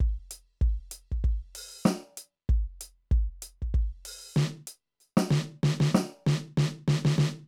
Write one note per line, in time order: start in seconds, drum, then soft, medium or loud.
0.01 kick medium
0.06 crash soft
0.32 closed hi-hat loud
0.62 kick medium
0.66 crash soft
0.92 closed hi-hat loud
1.12 kick soft
1.25 kick medium
1.29 crash soft
1.56 open hi-hat loud
1.86 snare loud
1.86 hi-hat pedal medium
2.18 closed hi-hat loud
2.50 kick medium
2.82 closed hi-hat loud
3.12 kick medium
3.43 closed hi-hat loud
3.63 kick soft
3.75 kick medium
3.75 crash soft
4.06 open hi-hat loud
4.37 snare loud
4.37 hi-hat pedal medium
4.68 closed hi-hat loud
5.01 hi-hat pedal medium
5.18 snare loud
5.31 snare loud
5.64 snare loud
5.81 snare loud
5.95 snare loud
6.27 snare loud
6.58 snare loud
6.89 snare loud
7.06 snare loud
7.19 snare loud